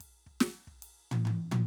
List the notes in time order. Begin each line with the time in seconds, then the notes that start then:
0.00 kick, ride
0.26 kick
0.40 snare, ride
0.67 kick
0.82 ride
1.11 floor tom, high tom
1.25 floor tom, high tom
1.51 floor tom, high tom